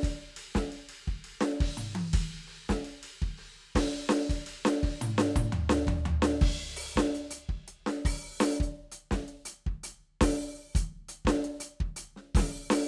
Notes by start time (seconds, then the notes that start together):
0.01 kick, hi-hat pedal, crash
0.36 crash
0.55 kick, snare, hi-hat pedal
0.72 crash
0.89 crash
1.06 kick, hi-hat pedal
1.24 crash
1.41 snare
1.60 kick, crash
1.77 mid tom
1.95 high tom
2.13 kick, hi-hat pedal, crash
2.47 crash
2.68 kick, snare, hi-hat pedal
2.84 crash
3.03 crash
3.22 kick
3.38 crash
3.75 kick, snare, crash
4.09 snare, crash
4.29 kick, hi-hat pedal, crash
4.46 crash
4.65 snare
4.83 kick, crash
5.01 mid tom
5.18 snare
5.36 kick, mid tom
5.52 floor tom
5.69 snare
5.87 kick, floor tom
6.05 kick, floor tom
6.22 snare
6.41 kick, ride
6.76 open hi-hat
6.94 kick, snare, hi-hat pedal
7.14 closed hi-hat
7.31 closed hi-hat
7.49 kick
7.68 closed hi-hat
7.86 snare
8.05 open hi-hat, kick, cross-stick
8.40 open hi-hat, snare
8.57 kick, hi-hat pedal
8.62 closed hi-hat
8.92 closed hi-hat
9.11 kick, snare
9.28 closed hi-hat
9.45 closed hi-hat
9.66 kick
9.83 closed hi-hat
10.21 open hi-hat, kick, snare
10.73 closed hi-hat, kick, hi-hat pedal
11.08 closed hi-hat
11.25 kick, snare
11.44 closed hi-hat
11.60 closed hi-hat
11.80 kick
11.96 closed hi-hat
12.16 snare
12.35 open hi-hat, kick, snare
12.70 open hi-hat, snare